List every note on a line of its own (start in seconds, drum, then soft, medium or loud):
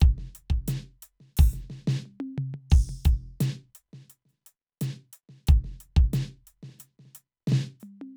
0.01 closed hi-hat medium
0.01 kick loud
0.19 snare soft
0.36 closed hi-hat medium
0.51 kick medium
0.68 closed hi-hat loud
0.68 snare loud
1.03 closed hi-hat medium
1.21 snare soft
1.37 open hi-hat loud
1.37 kick loud
1.54 snare soft
1.71 snare medium
1.88 snare loud
1.88 hi-hat pedal soft
2.06 mid tom soft
2.21 high tom loud
2.38 floor tom loud
2.55 floor tom medium
2.71 kick loud
2.71 crash medium
2.90 floor tom medium
3.05 closed hi-hat medium
3.05 kick loud
3.41 closed hi-hat loud
3.41 snare loud
3.76 closed hi-hat medium
3.94 snare soft
4.10 closed hi-hat medium
4.26 snare soft
4.26 hi-hat pedal soft
4.31 snare soft
4.34 snare soft
4.47 closed hi-hat medium
4.82 closed hi-hat loud
4.82 snare loud
5.13 closed hi-hat medium
5.30 snare soft
5.48 closed hi-hat medium
5.48 kick loud
5.65 snare soft
5.81 closed hi-hat medium
5.97 kick loud
6.14 closed hi-hat medium
6.14 snare loud
6.48 closed hi-hat medium
6.63 snare soft
6.70 snare soft
6.79 closed hi-hat medium
6.79 snare soft
6.79 hi-hat pedal medium
7.00 snare soft
7.06 snare soft
7.15 closed hi-hat medium
7.48 snare loud
7.48 hi-hat pedal medium
7.53 snare loud
7.81 hi-hat pedal medium
7.81 mid tom medium
8.02 high tom medium